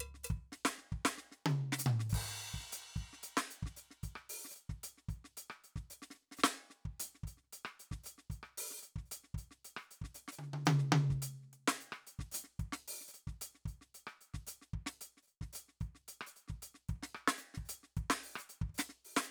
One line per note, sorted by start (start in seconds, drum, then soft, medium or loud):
0.01 percussion loud
0.15 snare soft
0.24 hi-hat pedal medium
0.24 percussion loud
0.31 kick medium
0.37 kick soft
0.53 snare soft
0.66 snare loud
0.71 hi-hat pedal soft
0.79 snare soft
0.92 kick soft
0.92 snare soft
1.06 snare loud
1.18 snare soft
1.32 snare soft
1.47 hi-hat pedal soft
1.47 high tom loud
1.73 snare medium
1.79 snare soft
1.79 hi-hat pedal loud
1.87 mid tom loud
2.00 snare soft
2.10 kick medium
2.10 hi-hat pedal medium
2.15 crash medium
2.31 snare soft
2.40 closed hi-hat soft
2.55 kick soft
2.60 snare soft
2.67 hi-hat pedal soft
2.73 closed hi-hat medium
2.97 kick soft
2.97 closed hi-hat soft
3.02 kick soft
3.14 snare soft
3.24 closed hi-hat medium
3.38 snare loud
3.51 closed hi-hat soft
3.63 kick soft
3.63 snare soft
3.77 hi-hat pedal medium
3.91 snare soft
4.04 closed hi-hat soft
4.04 kick soft
4.16 cross-stick medium
4.30 open hi-hat medium
4.45 snare soft
4.51 hi-hat pedal medium
4.56 closed hi-hat soft
4.70 kick soft
4.70 snare soft
4.84 closed hi-hat medium
4.98 snare soft
5.09 closed hi-hat soft
5.09 kick soft
5.16 kick soft
5.25 snare soft
5.38 closed hi-hat medium
5.51 cross-stick medium
5.64 closed hi-hat soft
5.76 kick soft
5.76 snare soft
5.91 open hi-hat soft
5.91 hi-hat pedal medium
6.03 snare soft
6.11 snare soft
6.15 snare soft
6.23 snare soft
6.28 snare soft
6.32 snare soft
6.37 kick soft
6.37 snare soft
6.37 hi-hat pedal soft
6.44 snare loud
6.71 snare soft
6.86 kick soft
7.00 closed hi-hat medium
7.15 snare soft
7.24 closed hi-hat soft
7.24 kick soft
7.38 snare soft
7.44 snare soft
7.53 closed hi-hat medium
7.66 cross-stick medium
7.80 closed hi-hat soft
7.92 kick soft
7.92 snare soft
8.04 closed hi-hat medium
8.04 hi-hat pedal soft
8.19 snare soft
8.30 closed hi-hat soft
8.30 kick soft
8.44 cross-stick medium
8.58 open hi-hat medium
8.72 snare soft
8.79 hi-hat pedal soft
8.83 closed hi-hat soft
8.96 kick soft
8.96 snare soft
9.06 hi-hat pedal soft
9.12 closed hi-hat medium
9.24 snare soft
9.35 closed hi-hat soft
9.35 kick soft
9.52 snare soft
9.65 closed hi-hat soft
9.77 cross-stick medium
9.82 hi-hat pedal soft
9.91 closed hi-hat soft
10.02 kick soft
10.02 snare soft
10.15 closed hi-hat soft
10.15 hi-hat pedal medium
10.29 snare soft
10.33 hi-hat pedal medium
10.39 high tom medium
10.44 snare soft
10.54 high tom medium
10.66 hi-hat pedal medium
10.66 high tom loud
10.79 snare soft
10.93 high tom loud
11.11 kick soft
11.11 snare soft
11.23 closed hi-hat medium
11.43 snare soft
11.54 closed hi-hat soft
11.68 snare loud
11.81 closed hi-hat soft
11.93 cross-stick medium
12.07 closed hi-hat soft
12.20 kick soft
12.20 snare soft
12.32 closed hi-hat loud
12.32 hi-hat pedal medium
12.45 snare soft
12.60 kick soft
12.60 closed hi-hat soft
12.66 kick soft
12.73 snare medium
12.88 open hi-hat medium
13.01 snare soft
13.09 hi-hat pedal medium
13.14 closed hi-hat soft
13.28 kick soft
13.28 snare soft
13.33 kick soft
13.42 closed hi-hat medium
13.55 snare soft
13.66 closed hi-hat soft
13.66 kick soft
13.82 snare soft
13.95 closed hi-hat soft
14.07 cross-stick medium
14.21 closed hi-hat soft
14.34 kick soft
14.34 snare soft
14.47 closed hi-hat medium
14.47 hi-hat pedal medium
14.62 snare soft
14.74 kick soft
14.87 snare medium
15.02 closed hi-hat medium
15.18 snare soft
15.23 hi-hat pedal soft
15.28 closed hi-hat soft
15.42 kick soft
15.42 snare soft
15.53 closed hi-hat medium
15.53 hi-hat pedal medium
15.69 snare soft
15.81 closed hi-hat soft
15.81 kick soft
15.96 snare soft
16.09 open hi-hat medium
16.22 cross-stick medium
16.27 hi-hat pedal medium
16.37 closed hi-hat soft
16.48 kick soft
16.48 snare soft
16.56 kick soft
16.63 closed hi-hat medium
16.75 snare soft
16.89 kick soft
16.89 closed hi-hat soft
16.96 kick soft
17.03 snare medium
17.15 cross-stick medium
17.28 snare loud
17.38 snare soft
17.38 hi-hat pedal medium
17.55 kick soft
17.55 snare soft
17.65 kick soft
17.65 hi-hat pedal soft
17.70 closed hi-hat medium
17.84 snare soft
17.97 kick soft
17.97 closed hi-hat soft
18.04 kick soft
18.11 snare loud
18.24 open hi-hat medium
18.36 cross-stick medium
18.36 hi-hat pedal medium
18.50 closed hi-hat soft
18.62 kick soft
18.69 kick soft
18.75 closed hi-hat medium
18.75 hi-hat pedal soft
18.80 snare medium
18.90 snare soft
19.05 open hi-hat soft
19.17 snare loud
19.23 hi-hat pedal medium